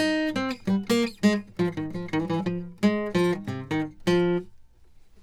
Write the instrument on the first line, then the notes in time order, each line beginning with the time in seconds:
acoustic guitar
0.00 D#4
0.37 C4
0.91 A#3
1.25 G#3
1.61 F3
1.79 D#3
1.97 F3
2.15 E3
2.32 E3
2.48 F3
2.84 G#3
3.16 F3
3.33 D#3
3.49 C3
3.72 D#3
4.08 F3